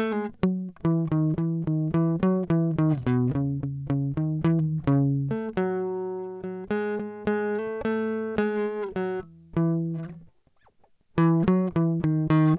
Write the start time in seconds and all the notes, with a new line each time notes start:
0.00 A3
0.13 G#3
0.44 F#3
0.85 E3
1.13 D#3
1.39 E3
1.68 D#3
1.95 E3
2.24 F#3
2.51 E3
2.79 D#3
3.07 B2
3.37 C#3
3.64 C#3
3.91 C#3
4.18 D#3
4.45 E3
4.60 D#3
4.88 C#3
5.32 A3
5.58 F#3
6.45 F#3
6.71 G#3
7.00 G#3
7.28 G#3
7.60 A3
7.86 A3
8.39 G#3
8.97 F#3
9.21 E3
9.57 E3
11.19 E3
11.49 F#3
11.77 E3
12.05 D#3
12.31 D#3